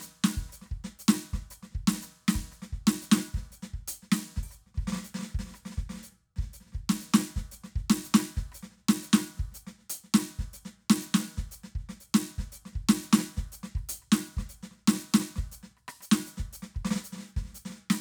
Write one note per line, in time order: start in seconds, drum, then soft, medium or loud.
0.01 cross-stick soft
0.01 snare soft
0.01 hi-hat pedal medium
0.25 snare loud
0.29 cross-stick soft
0.38 kick soft
0.50 cross-stick soft
0.50 snare soft
0.50 hi-hat pedal medium
0.62 snare soft
0.67 cross-stick soft
0.72 kick soft
0.72 snare soft
0.85 snare soft
0.97 snare soft
0.97 hi-hat pedal medium
1.09 snare loud
1.14 cross-stick medium
1.24 snare soft
1.34 kick soft
1.34 snare soft
1.44 snare soft
1.51 cross-stick soft
1.51 snare soft
1.51 hi-hat pedal medium
1.64 snare soft
1.73 kick soft
1.73 snare soft
1.88 snare loud
1.94 snare soft
2.02 cross-stick soft
2.02 snare soft
2.02 hi-hat pedal medium
2.21 snare soft
2.29 snare loud
2.35 kick soft
2.35 cross-stick soft
2.46 snare soft
2.52 cross-stick soft
2.52 snare soft
2.52 hi-hat pedal soft
2.63 snare soft
2.73 kick soft
2.73 snare soft
2.77 snare soft
2.88 snare loud
3.02 snare soft
3.02 hi-hat pedal medium
3.13 snare loud
3.18 snare medium
3.35 kick soft
3.35 snare soft
3.43 snare soft
3.51 snare soft
3.51 hi-hat pedal medium
3.64 snare soft
3.74 kick soft
3.74 snare soft
3.78 snare soft
3.89 closed hi-hat loud
4.03 snare soft
4.13 snare loud
4.37 kick soft
4.37 snare soft
4.44 snare soft
4.44 open hi-hat soft
4.52 cross-stick soft
4.52 hi-hat pedal soft
4.67 snare soft
4.75 kick soft
4.75 snare soft
4.80 cross-stick soft
4.80 snare soft
4.88 snare medium
4.93 snare medium
4.97 snare medium
5.03 snare soft
5.03 hi-hat pedal medium
5.15 snare medium
5.20 snare medium
5.23 snare medium
5.30 snare soft
5.36 kick soft
5.40 snare soft
5.45 snare soft
5.48 snare soft
5.52 cross-stick soft
5.52 snare soft
5.52 hi-hat pedal soft
5.66 snare soft
5.71 cross-stick soft
5.71 snare soft
5.78 kick soft
5.78 snare soft
5.90 snare soft
5.94 snare soft
5.97 snare soft
6.01 snare soft
6.03 snare soft
6.03 closed hi-hat soft
6.03 hi-hat pedal medium
6.12 snare soft
6.37 kick soft
6.37 snare soft
6.40 snare soft
6.42 snare soft
6.50 snare soft
6.53 snare soft
6.53 hi-hat pedal medium
6.61 snare soft
6.64 snare soft
6.67 snare soft
6.73 kick soft
6.73 snare soft
6.78 cross-stick soft
6.90 snare loud
7.02 snare soft
7.02 hi-hat pedal medium
7.15 snare loud
7.19 snare medium
7.37 kick soft
7.37 snare soft
7.52 snare soft
7.52 hi-hat pedal medium
7.65 snare soft
7.77 kick soft
7.77 snare soft
7.91 snare loud
8.02 snare soft
8.02 hi-hat pedal medium
8.15 snare loud
8.21 cross-stick medium
8.38 kick soft
8.38 snare soft
8.50 snare soft
8.52 cross-stick soft
8.52 snare soft
8.52 hi-hat pedal medium
8.64 snare soft
8.72 snare soft
8.78 snare soft
8.90 snare loud
9.02 snare soft
9.02 hi-hat pedal medium
9.14 snare loud
9.19 cross-stick soft
9.38 kick soft
9.38 snare soft
9.43 snare soft
9.55 hi-hat pedal medium
9.68 snare soft
9.78 snare soft
9.91 closed hi-hat loud
10.05 snare soft
10.15 snare loud
10.20 cross-stick medium
10.29 cross-stick soft
10.40 kick soft
10.40 snare soft
10.54 snare soft
10.54 hi-hat pedal medium
10.66 snare soft
10.78 snare soft
10.91 snare loud
11.02 cross-stick soft
11.02 hi-hat pedal medium
11.14 snare soft
11.14 snare loud
11.20 snare soft
11.38 kick soft
11.38 snare soft
11.49 snare soft
11.49 hi-hat pedal medium
11.53 snare soft
11.65 snare soft
11.76 kick soft
11.76 snare soft
11.79 snare soft
11.90 snare soft
11.98 snare soft
11.98 hi-hat pedal medium
12.03 snare soft
12.15 snare loud
12.39 kick soft
12.39 snare soft
12.47 snare soft
12.52 snare soft
12.52 hi-hat pedal medium
12.54 snare soft
12.54 closed hi-hat soft
12.66 snare soft
12.73 kick soft
12.73 snare soft
12.79 snare soft
12.90 snare loud
13.02 snare soft
13.02 hi-hat pedal medium
13.14 snare loud
13.19 snare medium
13.38 kick soft
13.38 snare soft
13.50 snare soft
13.53 snare soft
13.53 hi-hat pedal medium
13.64 snare soft
13.76 kick soft
13.76 cross-stick soft
13.76 snare soft
13.90 closed hi-hat loud
14.03 cross-stick soft
14.13 snare loud
14.19 cross-stick soft
14.24 cross-stick soft
14.38 kick soft
14.38 snare soft
14.50 snare soft
14.50 hi-hat pedal medium
14.64 snare soft
14.72 snare soft
14.78 snare soft
14.89 snare loud
14.94 snare soft
15.00 snare soft
15.00 hi-hat pedal medium
15.15 snare loud
15.21 snare soft
15.37 kick soft
15.37 snare soft
15.52 snare soft
15.52 hi-hat pedal medium
15.64 snare soft
15.78 cross-stick soft
15.89 cross-stick medium
16.01 cross-stick soft
16.01 snare soft
16.01 hi-hat pedal medium
16.12 snare loud
16.25 snare soft
16.25 hi-hat pedal medium
16.38 kick soft
16.38 snare soft
16.52 snare soft
16.52 hi-hat pedal medium
16.63 snare soft
16.74 kick soft
16.74 cross-stick soft
16.74 snare soft
16.86 snare medium
16.92 snare medium
16.96 snare medium
17.02 cross-stick soft
17.02 hi-hat pedal medium
17.13 snare soft
17.17 snare soft
17.19 snare soft
17.22 snare soft
17.26 snare soft
17.26 hi-hat pedal soft
17.37 kick soft
17.37 snare soft
17.42 snare soft
17.45 snare soft
17.48 snare soft
17.54 snare soft
17.54 hi-hat pedal medium
17.54 crash soft
17.66 snare soft
17.71 snare soft
17.75 snare soft
17.91 cross-stick medium
17.91 snare loud